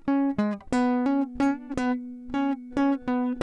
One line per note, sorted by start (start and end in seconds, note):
0.09 0.44 C#4
0.40 0.61 G#3
0.74 1.07 B3
1.08 1.32 C#4
1.42 1.58 C#4
1.79 1.99 B3
2.36 2.61 C#4
2.78 3.01 C#4
3.09 3.39 B3